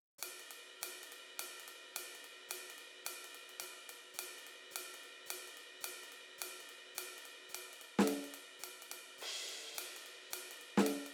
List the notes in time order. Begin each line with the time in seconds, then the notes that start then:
0.18 hi-hat pedal
0.23 ride
0.39 ride
0.51 ride
0.81 hi-hat pedal, ride
1.03 ride
1.12 ride
1.39 hi-hat pedal, ride
1.60 ride
1.68 ride
1.95 hi-hat pedal, ride
2.15 ride
2.24 ride
2.49 hi-hat pedal, ride
2.70 ride
2.78 ride
3.05 hi-hat pedal, ride
3.24 ride
3.34 ride
3.49 ride
3.60 hi-hat pedal, ride
3.89 ride
4.14 hi-hat pedal
4.19 ride
4.38 ride
4.47 ride
4.71 hi-hat pedal
4.76 ride
4.94 ride
5.03 ride
5.26 hi-hat pedal
5.30 ride
5.47 ride
5.57 ride
5.81 hi-hat pedal, ride
6.03 ride
6.12 ride
6.38 hi-hat pedal, ride
6.60 ride
6.69 ride
6.95 hi-hat pedal, ride
7.18 ride
7.25 ride
7.49 hi-hat pedal
7.55 ride
7.73 ride
7.81 ride
7.99 snare, hi-hat pedal
8.07 ride
8.24 ride
8.34 ride
8.59 hi-hat pedal
8.64 ride
8.82 ride
8.91 ride
9.18 hi-hat pedal, ride
9.41 ride
9.49 ride
9.74 hi-hat pedal, ride
9.96 ride
10.06 ride
10.30 hi-hat pedal, ride
10.51 ride
10.61 ride
10.77 snare, hi-hat pedal
10.86 ride
11.06 ride